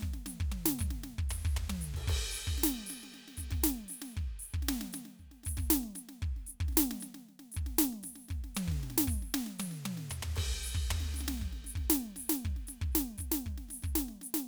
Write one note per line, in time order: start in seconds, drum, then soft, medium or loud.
0.01 kick soft
0.01 snare soft
0.14 snare soft
0.26 snare soft
0.26 hi-hat pedal medium
0.26 high tom soft
0.40 kick medium
0.52 high tom medium
0.66 snare medium
0.79 kick soft
0.79 hi-hat pedal loud
0.79 high tom soft
0.91 snare soft
1.04 snare soft
1.18 kick medium
1.29 floor tom medium
1.29 hi-hat pedal medium
1.45 kick medium
1.53 floor tom medium
1.53 hi-hat pedal soft
1.70 high tom medium
1.81 hi-hat pedal medium
1.94 kick soft
1.94 ride medium
2.04 kick medium
2.04 hi-hat pedal soft
2.09 crash medium
2.31 hi-hat pedal medium
2.47 kick soft
2.47 snare soft
2.58 snare soft
2.63 snare medium
2.78 snare soft
2.86 snare soft
2.86 hi-hat pedal loud
3.03 snare soft
3.09 hi-hat pedal soft
3.14 snare soft
3.28 snare soft
3.37 kick soft
3.37 snare soft
3.37 hi-hat pedal medium
3.51 kick soft
3.51 snare soft
3.61 snare medium
3.61 hi-hat pedal soft
3.76 snare soft
3.88 snare soft
3.88 hi-hat pedal loud
4.02 snare soft
4.13 snare soft
4.13 hi-hat pedal soft
4.17 kick soft
4.30 snare soft
4.39 hi-hat pedal medium
4.54 kick soft
4.54 snare soft
4.62 snare soft
4.69 snare medium
4.81 snare soft
4.93 snare soft
4.93 hi-hat pedal medium
5.05 snare soft
5.18 kick soft
5.18 snare soft
5.18 hi-hat pedal soft
5.31 snare soft
5.43 kick soft
5.43 snare soft
5.43 hi-hat pedal loud
5.57 kick soft
5.57 snare soft
5.69 snare loud
5.69 hi-hat pedal soft
5.80 snare soft
5.83 snare soft
5.95 snare soft
5.95 hi-hat pedal medium
6.09 snare soft
6.22 kick soft
6.22 snare soft
6.36 snare soft
6.46 snare soft
6.46 hi-hat pedal medium
6.60 kick medium
6.60 snare soft
6.68 snare soft
6.68 hi-hat pedal soft
6.73 snare soft
6.77 snare loud
6.91 snare medium
7.00 snare soft
7.00 hi-hat pedal medium
7.14 snare soft
7.29 snare soft
7.39 snare soft
7.52 snare soft
7.52 hi-hat pedal medium
7.57 kick soft
7.66 snare soft
7.77 snare loud
7.77 hi-hat pedal soft
7.93 snare soft
8.02 kick soft
8.02 snare soft
8.02 hi-hat pedal medium
8.16 snare soft
8.27 kick soft
8.27 snare soft
8.27 hi-hat pedal soft
8.44 snare soft
8.55 hi-hat pedal medium
8.55 high tom loud
8.68 kick soft
8.68 snare soft
8.83 snare soft
8.90 snare soft
8.98 snare medium
9.07 kick medium
9.07 snare soft
9.07 hi-hat pedal medium
9.22 snare soft
9.32 snare medium
9.32 hi-hat pedal soft
9.46 snare soft
9.59 hi-hat pedal medium
9.59 high tom medium
9.71 snare soft
9.83 hi-hat pedal soft
9.83 high tom medium
9.97 snare soft
10.10 floor tom medium
10.10 hi-hat pedal medium
10.22 floor tom medium
10.36 kick medium
10.36 crash medium
10.63 hi-hat pedal medium
10.75 kick medium
10.89 floor tom loud
10.89 hi-hat pedal soft
11.00 snare soft
11.14 snare soft
11.14 hi-hat pedal medium
11.21 snare soft
11.28 snare medium
11.41 kick soft
11.41 snare soft
11.53 snare soft
11.64 snare soft
11.64 hi-hat pedal medium
11.75 kick soft
11.75 snare soft
11.90 snare medium
11.90 hi-hat pedal soft
12.02 snare soft
12.16 kick soft
12.16 snare soft
12.16 hi-hat pedal loud
12.29 snare medium
12.44 kick soft
12.44 snare soft
12.56 snare soft
12.67 snare soft
12.67 hi-hat pedal medium
12.81 kick soft
12.81 snare soft
12.92 snare medium
12.92 hi-hat pedal soft
13.08 snare soft
13.18 kick soft
13.18 snare soft
13.18 hi-hat pedal medium
13.32 snare medium
13.46 kick soft
13.46 snare soft
13.58 snare soft
13.69 snare soft
13.70 snare soft
13.70 hi-hat pedal loud
13.82 kick soft
13.82 snare soft
13.95 snare medium
13.95 hi-hat pedal soft
14.08 snare soft
14.21 snare soft
14.21 hi-hat pedal loud
14.34 snare medium